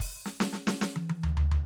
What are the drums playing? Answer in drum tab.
HH |o-----------|
SD |--ooooo-----|
T1 |-------oo---|
FT |---------ooo|
BD |o-----------|